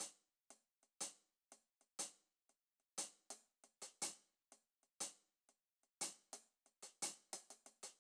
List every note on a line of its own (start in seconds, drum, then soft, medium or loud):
0.01 closed hi-hat loud
0.51 open hi-hat soft
0.84 closed hi-hat soft
1.02 closed hi-hat loud
1.53 closed hi-hat soft
1.82 closed hi-hat soft
2.00 closed hi-hat loud
2.50 closed hi-hat soft
2.81 closed hi-hat soft
2.99 closed hi-hat loud
3.31 closed hi-hat medium
3.65 closed hi-hat soft
3.83 closed hi-hat medium
4.03 closed hi-hat loud
4.53 closed hi-hat soft
4.84 closed hi-hat soft
5.01 closed hi-hat loud
5.50 closed hi-hat soft
5.84 closed hi-hat soft
6.02 closed hi-hat loud
6.34 closed hi-hat medium
6.67 closed hi-hat soft
6.84 closed hi-hat medium
7.03 closed hi-hat loud
7.34 closed hi-hat loud
7.51 closed hi-hat medium
7.67 closed hi-hat soft
7.84 closed hi-hat medium